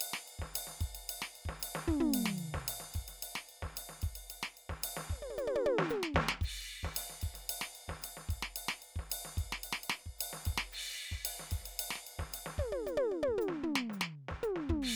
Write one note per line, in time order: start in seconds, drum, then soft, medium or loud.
0.01 hi-hat pedal medium
0.01 ride bell loud
0.14 snare medium
0.28 ride soft
0.39 kick soft
0.39 snare soft
0.54 hi-hat pedal medium
0.54 ride bell loud
0.67 snare soft
0.81 kick soft
0.81 ride medium
0.90 kick soft
0.90 snare soft
0.95 ride medium
1.08 hi-hat pedal medium
1.08 ride bell loud
1.22 snare medium
1.36 ride soft
1.46 kick soft
1.46 snare soft
1.60 hi-hat pedal medium
1.60 ride bell loud
1.75 snare medium
1.87 kick soft
1.87 floor tom loud
1.95 kick soft
2.00 floor tom loud
2.14 hi-hat pedal medium
2.14 ride bell loud
2.26 snare loud
2.38 ride soft
2.54 kick soft
2.54 snare medium
2.68 hi-hat pedal medium
2.68 ride bell loud
2.80 snare soft
2.94 kick soft
2.94 ride medium
3.01 kick soft
3.08 snare soft
3.08 ride medium
3.23 hi-hat pedal medium
3.23 ride bell loud
3.36 snare medium
3.49 ride soft
3.63 kick soft
3.63 snare soft
3.76 hi-hat pedal medium
3.76 ride bell loud
3.89 snare soft
3.99 snare soft
3.99 ride medium
4.03 kick soft
4.03 snare soft
4.08 snare soft
4.12 kick soft
4.12 ride medium
4.30 hi-hat pedal medium
4.30 ride bell medium
4.43 snare loud
4.57 ride soft
4.70 kick soft
4.70 snare soft
4.82 hi-hat pedal medium
4.82 ride bell loud
4.97 snare medium
5.10 kick soft
5.10 high tom soft
5.22 high tom medium
5.30 high tom medium
5.38 hi-hat pedal medium
5.38 high tom medium
5.47 high tom loud
5.56 high tom loud
5.66 high tom loud
5.79 snare medium
5.90 hi-hat pedal medium
5.90 mid tom loud
6.03 snare loud
6.15 kick soft
6.15 snare loud
6.29 snare loud
6.41 kick medium
6.41 hi-hat pedal medium
6.41 crash medium
6.83 kick soft
6.83 snare soft
6.94 hi-hat pedal medium
6.94 ride bell loud
7.10 snare soft
7.22 kick soft
7.22 ride medium
7.29 kick soft
7.34 snare soft
7.34 ride medium
7.50 hi-hat pedal medium
7.50 ride bell loud
7.61 snare medium
7.75 ride soft
7.88 kick soft
7.88 snare soft
7.93 kick soft
8.02 hi-hat pedal medium
8.02 ride bell medium
8.17 snare soft
8.29 kick soft
8.29 ride medium
8.35 kick soft
8.43 snare medium
8.56 hi-hat pedal medium
8.56 ride bell loud
8.69 snare loud
8.82 ride soft
8.96 kick soft
8.96 snare soft
9.10 hi-hat pedal medium
9.10 ride bell loud
9.25 snare soft
9.37 kick soft
9.37 ride soft
9.44 kick soft
9.53 snare medium
9.64 hi-hat pedal medium
9.64 ride bell medium
9.73 snare loud
9.84 ride medium
9.90 snare loud
10.06 kick soft
10.19 hi-hat pedal medium
10.19 ride bell loud
10.33 snare soft
10.46 kick soft
10.46 ride medium
10.53 kick soft
10.57 kick soft
10.57 snare loud
10.72 hi-hat pedal medium
10.72 crash loud
11.12 kick soft
11.12 snare soft
11.25 hi-hat pedal medium
11.25 ride bell loud
11.40 snare soft
11.46 snare soft
11.51 kick soft
11.51 ride medium
11.58 kick soft
11.58 snare soft
11.66 ride medium
11.79 hi-hat pedal medium
11.79 ride bell loud
11.91 snare medium
11.96 snare soft
12.07 ride medium
12.19 kick soft
12.19 snare soft
12.33 hi-hat pedal medium
12.33 ride bell medium
12.46 snare soft
12.58 kick soft
12.58 high tom medium
12.72 high tom medium
12.86 hi-hat pedal medium
12.86 high tom medium
12.97 high tom loud
13.11 high tom medium
13.23 high tom loud
13.28 kick soft
13.38 hi-hat pedal medium
13.38 mid tom loud
13.49 snare soft
13.63 floor tom medium
13.76 snare loud
13.90 snare soft
13.90 hi-hat pedal medium
14.01 snare loud
14.29 kick soft
14.29 snare soft
14.43 hi-hat pedal medium
14.43 mid tom loud
14.56 snare soft
14.69 kick soft
14.69 floor tom medium
14.76 kick soft
14.82 crash loud